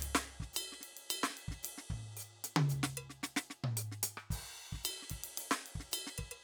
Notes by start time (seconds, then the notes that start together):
0.01 hi-hat pedal, ride
0.16 snare
0.41 kick, snare
0.54 hi-hat pedal, ride bell
0.73 snare
0.81 snare, ride
0.93 snare
0.98 snare, ride
1.10 hi-hat pedal, ride bell
1.24 snare
1.31 snare
1.38 ride
1.49 kick, snare
1.54 kick
1.64 hi-hat pedal, ride
1.78 snare
1.91 kick, mid tom
2.18 closed hi-hat, hi-hat pedal
2.45 closed hi-hat
2.57 high tom
2.70 floor tom, hi-hat pedal
2.84 snare
2.98 percussion
3.10 snare
3.24 snare, hi-hat pedal
3.37 snare
3.51 snare
3.65 mid tom
3.78 closed hi-hat, hi-hat pedal
3.92 snare
4.04 closed hi-hat
4.18 cross-stick
4.31 kick, hi-hat pedal, crash
4.43 kick
4.73 kick, snare
4.78 kick
4.84 hi-hat pedal, ride bell
5.03 snare
5.10 kick, snare, ride
5.24 ride
5.38 hi-hat pedal, ride
5.52 snare
5.67 ride
5.76 kick
5.80 snare
5.92 hi-hat pedal, ride bell
6.07 snare
6.19 kick, percussion
6.32 percussion